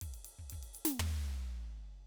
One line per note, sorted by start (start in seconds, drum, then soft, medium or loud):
0.01 kick soft
0.01 ride medium
0.14 ride soft
0.24 hi-hat pedal soft
0.24 ride medium
0.38 kick soft
0.50 kick soft
0.50 ride medium
0.63 ride soft
0.73 hi-hat pedal medium
0.73 ride medium
0.85 snare medium
0.99 floor tom loud